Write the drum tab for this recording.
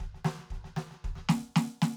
SD |ooooooooooo-o-o-|
BD |o---o---o-------|